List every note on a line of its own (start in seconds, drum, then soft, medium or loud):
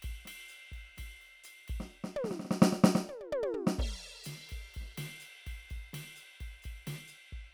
0.01 kick soft
0.01 hi-hat pedal soft
0.01 ride medium
0.09 kick soft
0.25 snare soft
0.25 ride medium
0.48 hi-hat pedal medium
0.48 ride soft
0.72 kick soft
0.72 ride soft
0.96 kick soft
0.96 snare soft
0.96 hi-hat pedal soft
0.96 ride medium
1.21 ride soft
1.44 hi-hat pedal medium
1.44 ride soft
1.68 kick soft
1.68 ride soft
1.75 kick soft
1.80 snare soft
1.90 hi-hat pedal soft
2.04 snare soft
2.16 high tom loud
2.24 snare soft
2.28 snare soft
2.28 hi-hat pedal soft
2.39 snare soft
2.45 snare soft
2.51 snare medium
2.62 snare loud
2.73 snare medium
2.84 snare loud
2.95 snare medium
3.09 high tom medium
3.21 high tom soft
3.32 high tom loud
3.43 open hi-hat soft
3.43 high tom loud
3.54 mid tom medium
3.67 snare medium
3.79 kick soft
3.79 crash medium
3.85 kick soft
4.24 snare soft
4.24 hi-hat pedal loud
4.24 ride medium
4.49 kick soft
4.49 ride soft
4.71 hi-hat pedal soft
4.71 ride soft
4.76 kick soft
4.76 snare soft
4.81 snare soft
4.83 snare soft
4.98 snare soft
4.98 ride medium
5.20 hi-hat pedal medium
5.20 ride soft
5.47 kick soft
5.47 ride soft
5.52 kick soft
5.69 kick soft
5.69 hi-hat pedal soft
5.69 ride soft
5.76 kick soft
5.94 snare soft
5.94 ride medium
6.16 hi-hat pedal medium
6.16 ride soft
6.40 kick soft
6.40 ride soft
6.62 kick soft
6.62 hi-hat pedal soft
6.62 ride soft
6.87 snare soft
6.87 ride medium
7.08 hi-hat pedal medium
7.32 kick soft